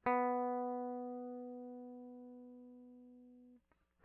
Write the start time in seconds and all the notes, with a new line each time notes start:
0.07 B3